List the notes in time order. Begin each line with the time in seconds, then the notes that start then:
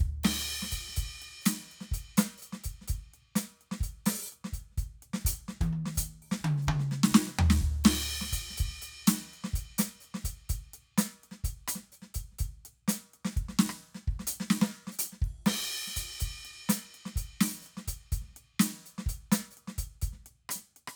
0.01 kick
0.08 kick
0.24 snare, crash
0.41 hi-hat pedal
0.49 closed hi-hat
0.63 snare
0.72 closed hi-hat, kick
0.89 snare
0.97 closed hi-hat, kick
1.04 kick
1.22 closed hi-hat
1.42 hi-hat pedal
1.46 closed hi-hat, snare
1.64 hi-hat pedal
1.72 closed hi-hat
1.81 snare
1.92 closed hi-hat, kick
2.18 closed hi-hat, snare
2.38 hi-hat pedal
2.42 closed hi-hat
2.53 snare
2.62 closed hi-hat, kick, snare
2.82 snare
2.88 closed hi-hat, kick, snare
2.94 kick, snare
2.96 snare
3.14 closed hi-hat
3.36 closed hi-hat, snare
3.62 closed hi-hat
3.72 snare
3.81 closed hi-hat, kick
3.87 kick
4.06 open hi-hat, snare
4.27 hi-hat pedal
4.33 closed hi-hat
4.45 snare
4.53 closed hi-hat, kick
4.72 snare
4.78 closed hi-hat, kick
5.03 closed hi-hat
5.14 snare
5.25 closed hi-hat, kick
5.32 kick
5.49 snare
5.61 kick, hi-hat pedal, high tom
5.68 kick
5.73 high tom
5.86 snare
5.95 closed hi-hat, kick, hi-hat pedal
6.23 open hi-hat
6.32 snare
6.41 kick, mid tom
6.58 snare
6.62 hi-hat pedal
6.68 kick, mid tom
6.80 snare
6.92 snare
7.04 snare
7.11 kick, snare
7.27 snare
7.39 floor tom
7.51 snare
7.62 kick
7.70 kick
7.85 snare, crash
8.08 closed hi-hat
8.22 snare
8.32 closed hi-hat, kick, hi-hat pedal
8.51 snare
8.58 closed hi-hat, kick
8.67 kick, snare
8.82 closed hi-hat
9.08 closed hi-hat, snare
9.34 closed hi-hat
9.44 snare
9.54 closed hi-hat, kick
9.79 closed hi-hat, snare
10.01 closed hi-hat, hi-hat pedal
10.15 snare
10.25 closed hi-hat, kick
10.50 closed hi-hat, kick
10.56 kick
10.74 closed hi-hat
10.98 closed hi-hat, snare
11.24 closed hi-hat
11.32 snare
11.44 closed hi-hat, kick
11.52 kick
11.68 closed hi-hat, cross-stick
11.76 snare
11.92 hi-hat pedal
12.02 snare
12.15 closed hi-hat, kick
12.32 snare
12.39 closed hi-hat, kick
12.66 closed hi-hat
12.88 closed hi-hat, snare
13.14 closed hi-hat
13.25 snare
13.37 kick, closed hi-hat
13.49 snare
13.59 snare
13.70 cross-stick
13.95 snare
14.08 kick
14.14 kick
14.20 snare
14.27 closed hi-hat
14.41 snare
14.51 snare
14.62 snare
14.87 snare
14.92 hi-hat pedal
14.99 closed hi-hat
15.13 snare
15.22 kick, crash
15.31 kick
15.46 snare, crash
15.88 snare
15.97 closed hi-hat, kick
16.21 closed hi-hat, kick
16.34 snare
16.45 closed hi-hat
16.70 closed hi-hat, snare
16.95 closed hi-hat
17.06 snare
17.16 closed hi-hat, kick
17.41 open hi-hat, snare
17.62 hi-hat pedal
17.67 closed hi-hat
17.77 snare
17.88 closed hi-hat, kick
18.12 closed hi-hat, kick
18.19 kick, snare
18.27 snare
18.29 snare
18.31 snare
18.37 closed hi-hat
18.60 closed hi-hat, snare
18.86 closed hi-hat
18.99 snare
19.07 closed hi-hat, kick
19.32 closed hi-hat, snare
19.51 hi-hat pedal
19.58 closed hi-hat
19.68 snare
19.78 closed hi-hat, kick
20.02 closed hi-hat, kick
20.13 snare
20.19 snare
20.26 closed hi-hat
20.50 closed hi-hat, cross-stick
20.56 snare
20.77 closed hi-hat
20.88 cross-stick